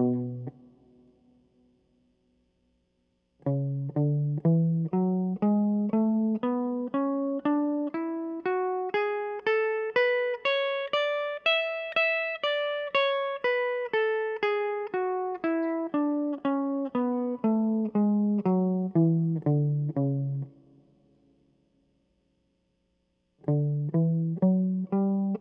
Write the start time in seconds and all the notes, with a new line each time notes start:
0.00 B2
3.48 C#3
3.98 D3
4.47 E3
4.95 F#3
5.43 G#3
5.94 A3
6.44 B3
6.95 C#4
7.46 D4
7.95 E4
8.46 F#4
8.95 G#4
9.47 A4
9.97 B4
10.46 C#5
10.94 D5
11.47 E5
11.97 E5
12.44 D5
12.95 C#5
13.45 B4
13.94 A4
14.44 G#4
14.94 F#4
15.45 E4
15.95 D4
16.46 C#4
16.96 B3
17.45 A3
17.96 G#3
18.47 F#3
18.97 E3
19.48 D3
19.98 C#3
23.50 D3
23.96 E3
24.44 F#3
24.94 G3